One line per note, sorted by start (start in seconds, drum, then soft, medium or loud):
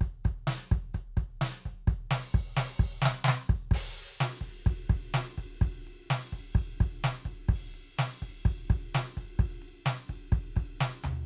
0.01 closed hi-hat medium
0.01 kick loud
0.25 closed hi-hat medium
0.25 kick loud
0.47 closed hi-hat medium
0.47 snare loud
0.71 closed hi-hat medium
0.71 kick loud
0.94 closed hi-hat medium
0.94 kick medium
1.17 closed hi-hat medium
1.17 kick loud
1.41 closed hi-hat medium
1.41 snare loud
1.66 closed hi-hat medium
1.66 kick medium
1.88 closed hi-hat medium
1.88 kick loud
2.11 open hi-hat loud
2.11 snare loud
2.19 snare soft
2.34 open hi-hat medium
2.34 kick loud
2.34 snare soft
2.57 open hi-hat loud
2.57 snare loud
2.79 open hi-hat medium
2.79 kick loud
3.01 snare loud
3.01 hi-hat pedal soft
3.06 snare loud
3.24 snare loud
3.28 snare loud
3.49 kick loud
3.71 open hi-hat loud
3.71 kick loud
3.71 crash loud
4.18 snare loud
4.18 hi-hat pedal soft
4.18 ride loud
4.41 kick medium
4.41 ride soft
4.64 kick loud
4.64 hi-hat pedal soft
4.64 ride medium
4.90 kick loud
4.90 ride medium
5.14 snare loud
5.14 ride loud
5.38 kick medium
5.38 ride medium
5.61 kick loud
5.61 ride medium
5.87 ride medium
6.10 snare loud
6.10 ride medium
6.33 kick medium
6.33 ride medium
6.37 cross-stick soft
6.55 kick loud
6.55 ride medium
6.80 kick loud
6.80 ride medium
7.04 snare loud
7.04 ride medium
7.25 kick medium
7.25 ride medium
7.49 kick loud
7.49 ride medium
7.74 ride medium
7.97 snare loud
7.97 ride medium
8.22 kick medium
8.22 ride medium
8.45 kick loud
8.45 ride medium
8.70 kick loud
8.70 ride medium
8.95 snare loud
8.95 ride loud
9.17 kick medium
9.17 ride medium
9.39 kick loud
9.39 ride medium
9.62 ride medium
9.86 snare loud
9.86 ride medium
10.09 kick medium
10.09 ride medium
10.32 kick loud
10.32 ride medium
10.56 kick loud
10.56 ride medium
10.81 snare loud
10.81 ride medium
11.04 floor tom loud
11.04 high tom loud